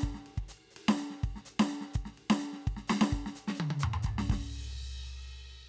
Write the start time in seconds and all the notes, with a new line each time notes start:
0.01 kick, hi-hat pedal, ride bell
0.10 kick
0.13 kick, snare
0.22 hi-hat pedal
0.27 snare, ride
0.35 kick, snare
0.39 snare
0.43 snare
0.46 snare, hi-hat pedal
0.52 ride bell
0.71 hi-hat pedal
0.77 ride
0.89 snare
0.97 hi-hat pedal, ride
1.11 snare
1.18 hi-hat pedal
1.24 kick, ride bell
1.30 kick
1.36 snare
1.46 hi-hat pedal, ride
1.60 snare
1.67 hi-hat pedal
1.72 ride
1.81 snare
1.94 kick, hi-hat pedal, ride bell
2.05 kick, snare
2.14 hi-hat pedal, ride
2.31 snare
2.41 hi-hat pedal, ride
2.54 snare
2.61 hi-hat pedal
2.68 kick, ride bell
2.73 kick
2.77 kick, snare
2.88 snare, hi-hat pedal
3.02 snare
3.09 kick, hi-hat pedal
3.14 ride bell
3.19 kick
3.27 snare
3.36 hi-hat pedal, ride bell
3.48 snare
3.56 hi-hat pedal
3.61 high tom
3.71 high tom
3.80 hi-hat pedal, mid tom
4.03 kick, hi-hat pedal, floor tom
4.11 kick
4.14 kick
4.19 snare
4.30 kick, snare, hi-hat pedal, crash
4.36 kick
4.42 kick